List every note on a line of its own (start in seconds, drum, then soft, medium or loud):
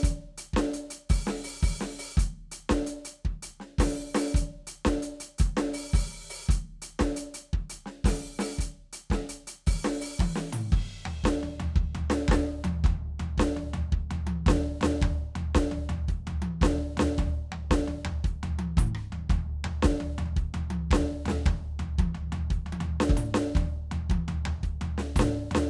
0.01 closed hi-hat loud
0.01 kick loud
0.01 hi-hat pedal soft
0.38 closed hi-hat loud
0.54 kick medium
0.54 snare loud
0.74 closed hi-hat loud
0.91 closed hi-hat loud
1.10 open hi-hat loud
1.10 kick loud
1.27 snare loud
1.44 open hi-hat loud
1.63 open hi-hat loud
1.63 kick loud
1.81 snare loud
1.99 open hi-hat loud
2.14 kick loud
2.14 hi-hat pedal soft
2.20 closed hi-hat loud
2.52 closed hi-hat loud
2.70 kick medium
2.70 snare loud
2.87 closed hi-hat loud
3.05 closed hi-hat loud
3.25 kick medium
3.43 closed hi-hat loud
3.60 snare medium
3.79 open hi-hat loud
3.79 kick loud
3.79 snare loud
4.15 open hi-hat loud
4.15 snare loud
4.31 kick loud
4.31 hi-hat pedal soft
4.37 closed hi-hat loud
4.67 closed hi-hat loud
4.85 kick medium
4.85 snare loud
5.03 closed hi-hat loud
5.21 closed hi-hat loud
5.39 closed hi-hat loud
5.39 kick loud
5.57 snare loud
5.74 open hi-hat loud
5.94 open hi-hat loud
5.94 kick loud
6.30 open hi-hat loud
6.47 kick loud
6.47 hi-hat pedal medium
6.51 closed hi-hat loud
6.82 closed hi-hat loud
7.00 kick medium
7.00 snare loud
7.17 closed hi-hat loud
7.34 closed hi-hat loud
7.53 kick loud
7.70 closed hi-hat loud
7.86 snare medium
8.05 open hi-hat loud
8.05 kick loud
8.05 snare loud
8.39 open hi-hat loud
8.39 snare loud
8.57 kick medium
8.57 hi-hat pedal soft
8.61 closed hi-hat loud
8.93 closed hi-hat loud
9.10 kick loud
9.10 snare loud
9.29 closed hi-hat loud
9.48 closed hi-hat loud
9.67 open hi-hat loud
9.67 kick loud
9.85 snare loud
10.01 open hi-hat loud
10.20 kick loud
10.20 high tom loud
10.36 snare loud
10.53 mid tom loud
10.73 kick loud
10.73 ride medium
11.06 floor tom loud
11.24 kick loud
11.24 snare loud
11.24 hi-hat pedal medium
11.43 floor tom medium
11.60 floor tom loud
11.76 kick loud
11.95 floor tom loud
12.10 snare loud
12.28 kick loud
12.28 snare loud
12.28 floor tom loud
12.65 floor tom loud
12.65 high tom loud
12.84 kick loud
12.84 floor tom loud
13.20 floor tom loud
13.38 kick loud
13.38 snare loud
13.38 hi-hat pedal soft
13.57 floor tom loud
13.74 floor tom loud
13.93 kick loud
14.11 floor tom loud
14.27 high tom loud
14.47 kick loud
14.47 snare loud
14.47 floor tom loud
14.81 snare loud
14.81 floor tom loud
15.02 kick loud
15.02 hi-hat pedal medium
15.02 floor tom loud
15.36 floor tom loud
15.55 kick loud
15.55 snare loud
15.72 floor tom loud
15.90 floor tom loud
16.09 kick loud
16.09 hi-hat pedal medium
16.27 floor tom loud
16.42 high tom loud
16.62 kick loud
16.62 snare loud
16.62 floor tom loud
16.98 snare loud
16.98 floor tom loud
17.17 kick loud
17.17 floor tom loud
17.17 hi-hat pedal soft
17.52 floor tom loud
17.71 kick loud
17.71 snare loud
17.88 floor tom medium
18.05 floor tom loud
18.25 kick loud
18.25 hi-hat pedal medium
18.44 floor tom loud
18.59 high tom loud
18.77 kick loud
18.77 mid tom loud
18.95 cross-stick medium
19.13 floor tom loud
19.30 kick loud
19.30 floor tom loud
19.30 hi-hat pedal medium
19.65 floor tom loud
19.83 kick loud
19.83 snare loud
20.01 floor tom loud
20.19 floor tom loud
20.26 floor tom medium
20.37 kick loud
20.37 hi-hat pedal medium
20.54 floor tom loud
20.71 high tom loud
20.91 kick loud
20.91 snare loud
20.91 floor tom loud
21.26 snare loud
21.26 floor tom loud
21.46 kick loud
21.46 hi-hat pedal medium
21.46 floor tom loud
21.80 floor tom loud
21.99 kick loud
21.99 high tom loud
22.15 floor tom medium
22.33 floor tom loud
22.40 floor tom soft
22.51 kick loud
22.51 hi-hat pedal medium
22.67 floor tom medium
22.73 high tom loud
22.81 floor tom loud
23.01 snare loud
23.10 kick loud
23.17 mid tom loud
23.35 snare loud
23.55 kick loud
23.55 floor tom loud
23.55 hi-hat pedal medium
23.92 floor tom loud
24.10 kick loud
24.10 high tom loud
24.28 floor tom loud
24.46 floor tom loud
24.64 kick medium
24.64 hi-hat pedal medium
24.82 floor tom loud
24.98 snare loud
25.16 kick loud
25.16 snare loud
25.16 mid tom loud
25.52 snare loud
25.52 floor tom loud